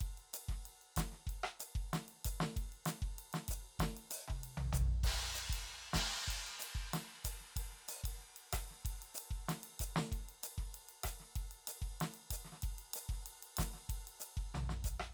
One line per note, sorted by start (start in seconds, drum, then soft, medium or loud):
0.01 kick soft
0.01 ride medium
0.18 ride soft
0.34 hi-hat pedal loud
0.34 ride loud
0.49 kick soft
0.49 snare soft
0.66 ride medium
0.82 ride soft
0.97 kick soft
0.97 snare medium
0.97 hi-hat pedal loud
0.97 ride medium
1.12 snare soft
1.27 kick soft
1.27 ride medium
1.44 cross-stick medium
1.60 hi-hat pedal medium
1.60 ride medium
1.76 kick medium
1.93 snare medium
1.93 ride medium
2.09 ride medium
2.25 kick soft
2.25 hi-hat pedal medium
2.25 ride loud
2.41 snare medium
2.57 kick soft
2.57 ride medium
2.72 ride soft
2.86 snare medium
2.86 hi-hat pedal loud
2.86 ride medium
3.02 kick medium
3.19 ride medium
3.33 snare medium
3.33 ride medium
3.49 kick soft
3.49 hi-hat pedal loud
3.49 ride medium
3.80 kick soft
3.80 snare medium
3.80 ride medium
3.97 ride medium
4.11 hi-hat pedal loud
4.11 ride loud
4.28 kick soft
4.28 high tom medium
4.44 ride medium
4.58 floor tom medium
4.73 kick medium
4.73 floor tom loud
4.73 hi-hat pedal loud
5.04 kick medium
5.04 crash medium
5.04 ride loud
5.35 hi-hat pedal loud
5.50 kick soft
5.50 ride medium
5.94 kick soft
5.94 snare medium
5.94 hi-hat pedal medium
5.94 ride loud
6.28 kick soft
6.28 ride medium
6.47 ride soft
6.60 hi-hat pedal medium
6.60 ride loud
6.75 kick soft
6.94 snare medium
6.94 ride loud
7.25 kick soft
7.25 hi-hat pedal medium
7.25 ride loud
7.41 snare soft
7.56 kick soft
7.56 ride loud
7.73 snare soft
7.88 hi-hat pedal medium
7.88 ride loud
8.04 kick soft
8.04 ride loud
8.18 snare soft
8.37 ride medium
8.53 kick soft
8.53 cross-stick medium
8.53 hi-hat pedal medium
8.53 ride loud
8.71 snare soft
8.85 kick soft
8.85 ride medium
9.02 ride medium
9.15 hi-hat pedal loud
9.15 ride loud
9.31 kick soft
9.49 snare medium
9.49 ride medium
9.64 ride medium
9.80 kick soft
9.80 hi-hat pedal loud
9.80 ride loud
9.96 snare medium
10.12 kick soft
10.12 ride medium
10.29 ride medium
10.43 hi-hat pedal loud
10.43 ride loud
10.58 kick soft
10.58 snare soft
10.75 ride medium
10.89 ride medium
11.04 kick soft
11.04 cross-stick medium
11.04 hi-hat pedal medium
11.04 ride loud
11.20 snare soft
11.36 kick soft
11.36 ride medium
11.51 ride medium
11.68 hi-hat pedal medium
11.68 ride loud
11.82 kick soft
12.01 snare medium
12.01 ride medium
12.14 ride medium
12.31 kick soft
12.31 hi-hat pedal medium
12.31 ride loud
12.45 snare soft
12.52 snare soft
12.63 kick soft
12.63 ride medium
12.79 ride medium
12.94 hi-hat pedal medium
12.94 ride loud
13.09 kick soft
13.09 snare soft
13.26 ride medium
13.43 ride medium
13.57 kick soft
13.57 snare medium
13.57 hi-hat pedal loud
13.57 ride loud
13.74 snare soft
13.89 kick soft
13.89 ride medium
14.07 ride medium
14.20 hi-hat pedal medium
14.20 ride medium
14.37 kick soft
14.55 snare soft
14.55 floor tom medium
14.70 snare soft
14.85 kick soft
14.85 hi-hat pedal loud
14.85 ride medium
15.00 cross-stick medium